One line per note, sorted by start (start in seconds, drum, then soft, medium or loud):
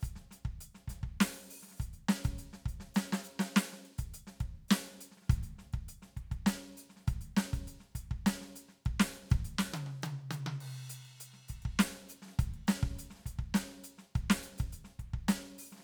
0.01 closed hi-hat soft
0.01 kick medium
0.01 hi-hat pedal soft
0.16 snare soft
0.31 closed hi-hat soft
0.31 snare soft
0.45 kick medium
0.45 closed hi-hat soft
0.61 closed hi-hat medium
0.75 snare soft
0.88 closed hi-hat medium
0.88 kick soft
0.88 snare soft
1.03 kick medium
1.03 closed hi-hat soft
1.20 open hi-hat medium
1.20 snare loud
1.50 open hi-hat medium
1.63 snare soft
1.68 snare soft
1.71 snare soft
1.77 closed hi-hat soft
1.77 kick medium
1.77 hi-hat pedal soft
1.93 closed hi-hat soft
2.09 snare loud
2.16 snare soft
2.24 closed hi-hat soft
2.24 kick medium
2.24 snare soft
2.38 closed hi-hat soft
2.53 snare soft
2.66 closed hi-hat soft
2.66 kick medium
2.80 snare soft
2.94 snare loud
2.94 hi-hat pedal medium
3.12 snare loud
3.24 hi-hat pedal medium
3.39 snare loud
3.56 snare loud
3.73 snare soft
3.85 closed hi-hat soft
3.98 closed hi-hat medium
3.98 kick medium
4.14 closed hi-hat medium
4.27 snare soft
4.36 snare soft
4.40 kick medium
4.40 closed hi-hat soft
4.55 open hi-hat soft
4.68 snare loud
4.68 hi-hat pedal soft
4.86 snare soft
4.86 closed hi-hat soft
5.01 closed hi-hat medium
5.12 snare soft
5.17 snare soft
5.22 snare soft
5.28 closed hi-hat medium
5.28 kick loud
5.28 snare soft
5.43 closed hi-hat soft
5.59 snare soft
5.73 kick medium
5.73 closed hi-hat soft
5.88 closed hi-hat medium
6.02 snare soft
6.17 kick soft
6.17 closed hi-hat soft
6.31 kick medium
6.31 closed hi-hat soft
6.46 open hi-hat medium
6.46 snare loud
6.77 open hi-hat medium
6.77 hi-hat pedal soft
6.90 snare soft
6.96 snare soft
7.00 snare soft
7.07 closed hi-hat soft
7.07 kick medium
7.21 closed hi-hat soft
7.37 snare loud
7.53 closed hi-hat soft
7.53 kick medium
7.67 closed hi-hat soft
7.80 snare soft
7.85 snare soft
7.95 closed hi-hat medium
7.95 kick soft
8.11 kick medium
8.26 closed hi-hat medium
8.26 snare loud
8.41 snare soft
8.44 snare soft
8.56 closed hi-hat medium
8.69 snare soft
8.85 kick medium
8.85 closed hi-hat soft
9.00 snare loud
9.15 closed hi-hat soft
9.30 closed hi-hat soft
9.30 kick loud
9.45 closed hi-hat soft
9.59 snare loud
9.74 hi-hat pedal medium
9.74 high tom loud
9.86 high tom medium
10.03 hi-hat pedal medium
10.03 high tom loud
10.31 hi-hat pedal medium
10.31 high tom loud
10.46 high tom loud
10.61 crash medium
10.90 closed hi-hat medium
11.05 closed hi-hat soft
11.20 closed hi-hat medium
11.33 snare soft
11.48 closed hi-hat medium
11.48 kick soft
11.62 kick medium
11.62 closed hi-hat soft
11.79 closed hi-hat medium
11.79 snare loud
11.91 snare soft
12.09 open hi-hat medium
12.09 hi-hat pedal medium
12.22 snare soft
12.26 snare soft
12.28 snare soft
12.39 closed hi-hat soft
12.39 kick medium
12.54 closed hi-hat soft
12.67 closed hi-hat medium
12.67 snare loud
12.83 kick medium
12.99 closed hi-hat medium
13.10 snare soft
13.15 snare soft
13.18 snare soft
13.21 snare soft
13.26 closed hi-hat soft
13.26 kick soft
13.39 kick medium
13.39 closed hi-hat soft
13.54 closed hi-hat medium
13.54 snare loud
13.68 snare soft
13.70 snare soft
13.84 closed hi-hat medium
13.98 snare soft
14.15 closed hi-hat soft
14.15 kick medium
14.30 snare loud
14.43 closed hi-hat soft
14.58 closed hi-hat soft
14.58 kick medium
14.73 closed hi-hat medium
14.84 snare soft
14.99 kick soft
14.99 closed hi-hat soft
15.14 kick medium
15.28 open hi-hat medium
15.28 snare loud
15.43 snare soft
15.58 open hi-hat medium
15.72 snare soft
15.76 snare soft
15.79 snare soft